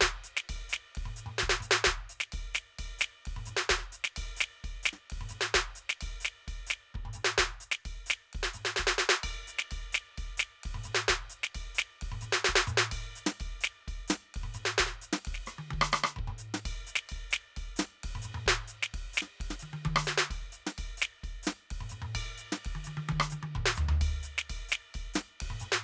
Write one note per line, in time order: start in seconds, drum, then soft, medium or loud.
0.01 kick soft
0.01 snare loud
0.24 hi-hat pedal medium
0.37 snare medium
0.49 kick soft
0.49 ride bell medium
0.56 kick soft
0.70 snare medium
0.70 hi-hat pedal medium
0.95 kick soft
0.95 ride medium
1.06 mid tom medium
1.10 ride soft
1.16 hi-hat pedal medium
1.26 mid tom medium
1.38 snare medium
1.43 kick soft
1.48 kick soft
1.48 snare loud
1.61 hi-hat pedal medium
1.61 mid tom medium
1.71 snare loud
1.84 kick soft
1.84 snare loud
2.10 hi-hat pedal medium
2.20 snare medium
2.32 kick soft
2.32 ride bell medium
2.55 snare medium
2.55 hi-hat pedal medium
2.79 kick soft
2.79 ride bell medium
2.85 kick soft
2.99 snare loud
2.99 hi-hat pedal medium
3.26 kick soft
3.26 ride medium
3.37 mid tom medium
3.46 hi-hat pedal medium
3.46 mid tom soft
3.57 snare medium
3.70 kick soft
3.70 snare loud
3.78 snare soft
3.92 hi-hat pedal medium
4.04 snare medium
4.17 kick soft
4.17 ride bell medium
4.37 snare loud
4.37 hi-hat pedal medium
4.64 kick soft
4.64 ride bell medium
4.83 snare loud
4.83 hi-hat pedal medium
4.93 snare soft
5.10 kick soft
5.10 ride medium
5.18 kick soft
5.18 mid tom medium
5.29 hi-hat pedal medium
5.29 mid tom medium
5.41 snare medium
5.54 kick soft
5.54 snare loud
5.75 hi-hat pedal medium
5.90 snare medium
6.01 kick soft
6.01 ride bell medium
6.21 hi-hat pedal medium
6.25 snare medium
6.48 kick soft
6.48 ride bell medium
6.67 snare medium
6.67 hi-hat pedal medium
6.95 kick soft
6.95 mid tom medium
7.05 mid tom medium
7.13 hi-hat pedal medium
7.25 snare medium
7.38 kick soft
7.38 snare loud
7.46 snare soft
7.60 hi-hat pedal medium
7.72 snare medium
7.85 kick soft
7.85 ride bell medium
8.06 snare loud
8.06 hi-hat pedal medium
8.33 kick soft
8.33 ride medium
8.41 kick soft
8.41 snare medium
8.54 hi-hat pedal medium
8.54 mid tom soft
8.65 snare medium
8.76 kick soft
8.76 snare medium
8.87 snare loud
8.98 snare medium
8.98 hi-hat pedal medium
9.09 snare loud
9.24 kick soft
9.24 ride bell loud
9.48 hi-hat pedal medium
9.59 snare medium
9.71 kick soft
9.71 ride bell medium
9.93 snare medium
9.93 hi-hat pedal medium
10.18 kick soft
10.18 ride bell medium
10.38 snare medium
10.38 hi-hat pedal medium
10.64 kick soft
10.64 ride medium
10.75 mid tom medium
10.84 hi-hat pedal medium
10.84 mid tom medium
10.95 snare medium
11.08 kick soft
11.08 snare loud
11.30 hi-hat pedal medium
11.44 snare medium
11.55 kick soft
11.55 ride bell medium
11.75 snare loud
11.75 hi-hat pedal medium
12.02 kick soft
12.02 ride medium
12.12 mid tom medium
12.21 hi-hat pedal medium
12.21 mid tom medium
12.33 snare loud
12.45 snare loud
12.49 kick soft
12.56 snare loud
12.67 hi-hat pedal medium
12.67 mid tom loud
12.78 snare loud
12.92 kick soft
12.92 ride bell loud
13.16 hi-hat pedal medium
13.27 snare loud
13.40 kick soft
13.40 ride bell medium
13.46 kick soft
13.61 snare medium
13.61 hi-hat pedal medium
13.88 kick soft
13.88 ride bell medium
13.94 kick soft
14.08 snare loud
14.08 hi-hat pedal medium
14.34 kick soft
14.34 ride medium
14.42 kick soft
14.42 mid tom medium
14.54 hi-hat pedal medium
14.54 mid tom medium
14.65 snare medium
14.78 kick soft
14.78 snare loud
14.87 snare soft
15.02 hi-hat pedal medium
15.13 snare medium
15.25 kick soft
15.25 ride medium
15.33 kick soft
15.33 snare soft
15.47 cross-stick soft
15.47 hi-hat pedal medium
15.59 high tom medium
15.71 kick soft
15.71 high tom medium
15.82 cross-stick loud
15.92 cross-stick loud
15.92 hi-hat pedal medium
16.04 cross-stick loud
16.16 kick soft
16.16 mid tom medium
16.25 kick soft
16.25 mid tom medium
16.38 hi-hat pedal medium
16.54 snare medium
16.66 kick soft
16.66 ride bell medium
16.75 kick soft
16.87 hi-hat pedal medium
16.96 snare medium
17.09 kick soft
17.09 ride bell medium
17.31 snare loud
17.31 hi-hat pedal medium
17.57 kick soft
17.57 ride bell medium
17.77 snare loud
17.77 hi-hat pedal medium
18.04 kick soft
18.04 ride medium
18.10 kick soft
18.15 mid tom medium
18.22 hi-hat pedal medium
18.22 mid tom medium
18.35 mid tom medium
18.47 kick soft
18.47 snare loud
18.52 kick soft
18.57 mid tom soft
18.68 hi-hat pedal medium
18.83 snare medium
18.94 kick soft
18.94 ride medium
19.00 kick soft
19.14 snare loud
19.14 hi-hat pedal medium
19.22 snare soft
19.40 kick soft
19.40 ride medium
19.51 snare medium
19.60 hi-hat pedal medium
19.60 high tom medium
19.73 high tom medium
19.85 kick soft
19.85 high tom loud
19.96 cross-stick loud
20.04 snare medium
20.04 hi-hat pedal medium
20.18 snare loud
20.31 kick soft
20.31 ride bell medium
20.52 hi-hat pedal medium
20.67 snare medium
20.78 kick soft
20.78 ride bell medium
20.97 hi-hat pedal medium
21.02 snare loud
21.24 kick soft
21.24 ride bell soft
21.43 snare medium
21.43 hi-hat pedal medium
21.71 kick soft
21.71 ride medium
21.78 kick soft
21.78 mid tom medium
21.90 hi-hat pedal medium
21.90 mid tom medium
22.15 kick soft
22.15 ride bell loud
22.38 hi-hat pedal medium
22.38 ride soft
22.52 snare medium
22.65 kick soft
22.65 ride medium
22.75 high tom medium
22.84 hi-hat pedal medium
22.84 high tom medium
22.97 high tom medium
23.09 kick soft
23.09 high tom loud
23.20 cross-stick loud
23.30 hi-hat pedal medium
23.30 high tom medium
23.43 high tom medium
23.55 kick soft
23.55 mid tom medium
23.63 kick soft
23.63 snare loud
23.76 floor tom loud
23.76 hi-hat pedal medium
23.89 floor tom loud
24.01 kick soft
24.01 ride bell medium
24.23 hi-hat pedal medium
24.38 snare medium
24.50 kick soft
24.50 ride bell medium
24.56 kick soft
24.69 snare medium
24.69 hi-hat pedal medium
24.94 kick soft
24.94 ride bell medium
25.14 snare medium
25.14 hi-hat pedal medium
25.41 kick soft
25.41 ride loud
25.48 kick soft
25.48 mid tom medium
25.60 hi-hat pedal medium
25.60 mid tom medium
25.72 snare medium